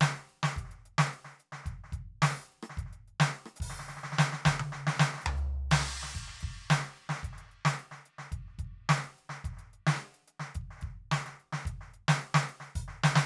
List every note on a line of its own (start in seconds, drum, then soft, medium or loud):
0.01 closed hi-hat medium
0.01 snare loud
0.13 closed hi-hat soft
0.13 snare soft
0.29 closed hi-hat soft
0.44 snare loud
0.57 closed hi-hat medium
0.57 kick soft
0.66 snare soft
0.70 closed hi-hat medium
0.70 snare soft
0.73 snare soft
0.79 snare soft
0.86 closed hi-hat soft
0.99 snare loud
1.14 closed hi-hat medium
1.25 snare soft
1.40 closed hi-hat soft
1.40 hi-hat pedal soft
1.53 snare medium
1.64 closed hi-hat medium
1.64 kick soft
1.64 snare soft
1.72 kick soft
1.84 snare soft
1.90 closed hi-hat medium
1.90 kick soft
1.90 snare soft
1.99 kick soft
2.02 kick soft
2.23 open hi-hat medium
2.23 snare loud
2.32 snare soft
2.38 open hi-hat soft
2.53 closed hi-hat soft
2.63 cross-stick medium
2.70 snare soft
2.78 closed hi-hat medium
2.78 kick soft
2.84 kick soft
2.84 snare soft
2.91 closed hi-hat soft
2.91 snare soft
3.08 closed hi-hat soft
3.21 snare loud
3.27 hi-hat pedal soft
3.35 closed hi-hat soft
3.46 cross-stick medium
3.57 hi-hat pedal loud
3.61 open hi-hat loud
3.61 kick soft
3.67 kick soft
3.67 snare soft
3.80 snare soft
3.89 snare soft
3.98 snare soft
4.04 snare medium
4.12 snare medium
4.12 hi-hat pedal medium
4.19 snare loud
4.33 snare medium
4.41 hi-hat pedal soft
4.46 kick soft
4.46 snare loud
4.60 high tom loud
4.73 snare medium
4.88 snare loud
4.97 snare loud
4.97 hi-hat pedal medium
5.14 snare soft
5.19 snare soft
5.19 hi-hat pedal medium
5.24 kick soft
5.24 floor tom loud
5.38 hi-hat pedal medium
5.72 snare loud
5.72 crash loud
5.80 snare medium
5.85 closed hi-hat soft
6.03 snare soft
6.16 closed hi-hat medium
6.16 kick soft
6.21 kick soft
6.28 snare soft
6.36 snare soft
6.41 closed hi-hat medium
6.41 kick soft
6.52 kick soft
6.71 closed hi-hat medium
6.71 snare loud
6.81 closed hi-hat soft
6.81 snare soft
6.98 closed hi-hat soft
7.10 snare medium
7.16 snare soft
7.24 closed hi-hat medium
7.24 kick soft
7.34 snare soft
7.38 closed hi-hat medium
7.38 snare soft
7.41 snare soft
7.45 snare soft
7.47 snare soft
7.52 closed hi-hat soft
7.66 snare loud
7.80 closed hi-hat medium
7.92 snare soft
8.06 closed hi-hat medium
8.06 hi-hat pedal soft
8.19 snare soft
8.33 closed hi-hat medium
8.33 kick soft
8.41 kick soft
8.48 snare soft
8.59 closed hi-hat medium
8.59 kick soft
8.65 kick soft
8.68 kick soft
8.90 closed hi-hat medium
8.90 snare loud
8.98 snare soft
9.05 open hi-hat medium
9.19 closed hi-hat soft
9.30 snare medium
9.45 closed hi-hat medium
9.45 kick soft
9.45 snare soft
9.51 kick soft
9.51 snare soft
9.58 closed hi-hat medium
9.58 snare soft
9.61 snare soft
9.74 closed hi-hat soft
9.87 snare loud
9.96 hi-hat pedal medium
10.01 closed hi-hat soft
10.15 closed hi-hat soft
10.28 closed hi-hat medium
10.40 snare medium
10.55 closed hi-hat medium
10.55 kick soft
10.62 kick soft
10.71 snare soft
10.77 snare soft
10.81 closed hi-hat medium
10.81 kick soft
10.81 snare soft
10.84 snare soft
11.12 closed hi-hat medium
11.12 snare loud
11.27 open hi-hat medium
11.27 snare soft
11.40 closed hi-hat soft
11.53 snare medium
11.66 closed hi-hat medium
11.66 kick soft
11.72 kick soft
11.82 snare soft
11.94 closed hi-hat soft
12.09 snare loud
12.22 closed hi-hat medium
12.35 snare loud
12.49 closed hi-hat medium
12.61 snare soft
12.76 open hi-hat loud
12.76 kick soft
12.76 hi-hat pedal soft
12.82 kick soft
12.89 snare soft
13.04 snare loud
13.16 snare loud